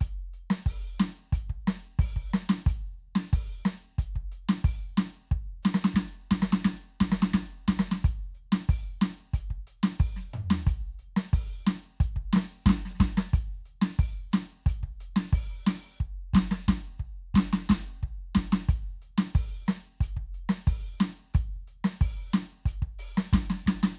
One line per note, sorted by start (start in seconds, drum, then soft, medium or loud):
0.01 closed hi-hat loud
0.01 kick medium
0.34 closed hi-hat soft
0.51 snare loud
0.66 open hi-hat loud
0.66 kick loud
0.98 snare loud
0.98 hi-hat pedal medium
1.33 closed hi-hat loud
1.33 kick loud
1.50 kick medium
1.68 snare loud
1.99 open hi-hat loud
1.99 kick loud
1.99 snare soft
2.16 kick medium
2.31 snare loud
2.31 hi-hat pedal soft
2.50 snare loud
2.67 closed hi-hat loud
2.67 kick loud
3.16 snare loud
3.33 open hi-hat loud
3.33 kick loud
3.66 closed hi-hat medium
3.66 snare loud
3.66 hi-hat pedal soft
3.99 closed hi-hat loud
3.99 kick medium
4.16 kick medium
4.32 closed hi-hat medium
4.49 snare loud
4.65 open hi-hat loud
4.65 kick loud
4.98 snare loud
5.29 kick loud
5.29 hi-hat pedal soft
5.63 kick soft
5.63 snare loud
5.63 hi-hat pedal medium
5.75 snare loud
5.85 snare loud
5.95 kick medium
5.95 snare loud
6.31 kick medium
6.31 snare loud
6.43 snare loud
6.53 snare loud
6.65 kick soft
6.65 snare loud
6.65 hi-hat pedal soft
7.00 kick medium
7.00 snare loud
7.00 hi-hat pedal soft
7.12 snare loud
7.23 snare loud
7.34 kick medium
7.34 snare loud
7.68 kick medium
7.68 snare loud
7.79 snare loud
7.92 snare loud
8.05 closed hi-hat loud
8.05 kick loud
8.35 hi-hat pedal soft
8.53 snare loud
8.69 open hi-hat loud
8.69 kick loud
9.01 snare loud
9.01 hi-hat pedal soft
9.34 closed hi-hat loud
9.34 kick medium
9.51 kick medium
9.67 closed hi-hat medium
9.83 snare loud
10.00 kick loud
10.00 open hi-hat loud
10.17 snare medium
10.33 hi-hat pedal soft
10.33 mid tom loud
10.51 snare loud
10.67 closed hi-hat loud
10.67 kick loud
10.99 closed hi-hat soft
11.17 snare loud
11.33 open hi-hat loud
11.33 kick loud
11.67 closed hi-hat medium
11.67 snare loud
11.67 hi-hat pedal soft
12.01 closed hi-hat loud
12.01 kick loud
12.16 kick medium
12.33 snare loud
12.33 hi-hat pedal medium
12.36 snare loud
12.66 kick loud
12.66 snare loud
12.66 hi-hat pedal medium
12.69 snare loud
12.86 snare medium
12.91 cross-stick soft
12.95 snare soft
12.95 hi-hat pedal medium
13.00 kick loud
13.00 snare loud
13.18 snare loud
13.34 closed hi-hat loud
13.34 kick loud
13.57 hi-hat pedal soft
13.66 closed hi-hat medium
13.82 snare loud
13.99 open hi-hat loud
13.99 kick loud
14.32 closed hi-hat loud
14.32 snare loud
14.32 hi-hat pedal soft
14.67 closed hi-hat loud
14.67 kick loud
14.83 kick medium
15.01 closed hi-hat medium
15.16 snare loud
15.23 snare soft
15.33 open hi-hat loud
15.33 kick loud
15.51 kick soft
15.67 open hi-hat loud
15.67 snare loud
15.98 kick medium
15.98 hi-hat pedal soft
16.34 kick medium
16.34 snare loud
16.37 snare loud
16.52 snare loud
16.68 kick loud
16.68 snare loud
17.00 kick medium
17.00 snare soft
17.35 kick medium
17.35 snare loud
17.38 snare loud
17.53 snare loud
17.70 kick medium
17.70 snare loud
17.72 snare loud
18.03 kick medium
18.35 kick medium
18.35 snare loud
18.53 snare loud
18.69 closed hi-hat loud
18.69 kick loud
19.02 closed hi-hat medium
19.18 snare loud
19.35 open hi-hat loud
19.35 kick loud
19.67 closed hi-hat loud
19.67 snare loud
19.67 hi-hat pedal medium
20.01 closed hi-hat loud
20.01 kick loud
20.17 kick medium
20.35 closed hi-hat soft
20.49 snare loud
20.67 open hi-hat loud
20.67 kick loud
20.99 snare loud
20.99 hi-hat pedal medium
21.34 closed hi-hat loud
21.34 kick loud
21.56 kick soft
21.68 closed hi-hat medium
21.85 snare loud
21.91 snare soft
22.01 open hi-hat loud
22.01 kick loud
22.32 closed hi-hat loud
22.32 snare loud
22.32 hi-hat pedal medium
22.66 closed hi-hat loud
22.66 kick medium
22.83 kick medium
22.99 open hi-hat loud
23.18 snare loud
23.33 kick loud
23.33 snare loud
23.50 snare loud
23.67 kick medium
23.67 snare loud
23.67 hi-hat pedal medium
23.83 snare loud